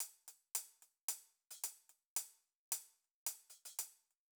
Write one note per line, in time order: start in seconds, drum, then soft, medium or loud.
0.01 closed hi-hat loud
0.28 closed hi-hat medium
0.55 closed hi-hat loud
0.82 closed hi-hat soft
1.08 closed hi-hat loud
1.51 closed hi-hat medium
1.64 closed hi-hat loud
1.89 closed hi-hat soft
2.16 closed hi-hat loud
2.72 closed hi-hat loud
3.04 closed hi-hat soft
3.26 closed hi-hat loud
3.50 closed hi-hat soft
3.65 closed hi-hat medium
3.79 closed hi-hat loud
4.11 closed hi-hat soft